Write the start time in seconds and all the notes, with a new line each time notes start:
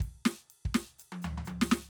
0.00 kick, ride
0.25 snare, ride
0.50 ride
0.65 kick
0.74 snare, ride
0.99 hi-hat pedal, ride
1.12 high tom
1.22 floor tom, hi-hat pedal
1.38 floor tom
1.45 hi-hat pedal, high tom
1.61 snare
1.69 snare, hi-hat pedal